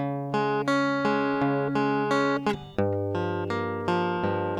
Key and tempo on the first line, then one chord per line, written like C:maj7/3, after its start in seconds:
F minor, 85 BPM
0.02 C#:(1,5)
2.84 G:min7(*5)